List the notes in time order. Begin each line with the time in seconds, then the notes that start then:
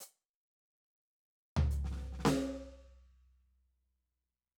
0.00 hi-hat pedal
1.56 floor tom
1.71 hi-hat pedal
1.84 snare
1.91 snare
1.96 snare
2.01 snare
2.05 snare
2.12 snare
2.19 snare
2.25 snare, hi-hat pedal